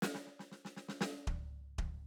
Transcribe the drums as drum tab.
HH |p---------------|
SD |ooooooooo-------|
FT |----------o---o-|
BD |----------o---o-|